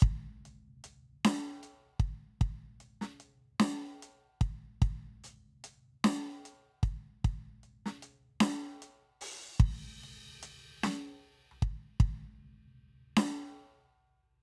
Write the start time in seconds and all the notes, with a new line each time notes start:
0.01 kick, hi-hat pedal
0.07 closed hi-hat
0.46 closed hi-hat
0.84 closed hi-hat
1.25 snare, closed hi-hat
1.64 closed hi-hat
2.00 kick, closed hi-hat
2.42 kick, closed hi-hat
2.81 closed hi-hat
3.02 snare
3.21 closed hi-hat
3.60 closed hi-hat, snare
4.03 closed hi-hat
4.42 kick, closed hi-hat
4.82 kick, closed hi-hat
5.24 closed hi-hat
5.65 closed hi-hat
6.05 snare, closed hi-hat
6.46 closed hi-hat
6.83 kick, closed hi-hat
7.25 kick, closed hi-hat
7.64 closed hi-hat
7.86 snare
8.03 closed hi-hat
8.41 closed hi-hat, snare
8.83 closed hi-hat
9.21 open hi-hat
9.60 kick, hi-hat pedal, crash
9.80 kick
10.04 closed hi-hat
10.43 closed hi-hat
10.84 snare
11.01 snare
11.04 snare
11.08 snare
11.52 snare, floor tom, ride
11.63 kick
12.01 kick
13.17 snare